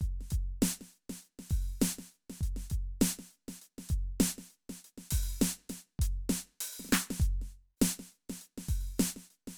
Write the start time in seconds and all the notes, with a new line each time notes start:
0.01 kick, closed hi-hat
0.21 snare
0.30 kick, open hi-hat
0.62 closed hi-hat, snare, hi-hat pedal
0.81 snare
0.93 closed hi-hat
1.09 snare, closed hi-hat
1.23 closed hi-hat
1.39 snare
1.50 kick, open hi-hat
1.80 closed hi-hat, snare, hi-hat pedal
1.99 snare
2.12 closed hi-hat
2.30 snare, closed hi-hat
2.41 closed hi-hat, kick
2.56 snare
2.70 kick, open hi-hat
3.01 closed hi-hat, snare, hi-hat pedal
3.19 snare
3.31 closed hi-hat
3.48 snare, closed hi-hat
3.62 closed hi-hat
3.78 snare
3.89 kick, closed hi-hat
4.20 closed hi-hat, snare, hi-hat pedal
4.38 snare
4.50 closed hi-hat
4.69 snare, closed hi-hat
4.84 closed hi-hat
4.98 snare
5.11 open hi-hat, kick
5.39 closed hi-hat, snare, hi-hat pedal
5.69 closed hi-hat, snare
5.99 closed hi-hat, kick
6.29 closed hi-hat, snare
6.61 open hi-hat
6.79 snare
6.85 snare
6.89 snare, hi-hat pedal
6.92 snare
7.10 snare
7.20 closed hi-hat, kick
7.42 snare
7.52 closed hi-hat
7.77 hi-hat pedal
7.82 closed hi-hat, snare
7.99 snare
8.12 closed hi-hat
8.29 snare, closed hi-hat
8.41 closed hi-hat
8.58 snare
8.69 open hi-hat, kick
8.98 closed hi-hat, snare, hi-hat pedal
9.16 snare
9.30 closed hi-hat
9.47 snare, closed hi-hat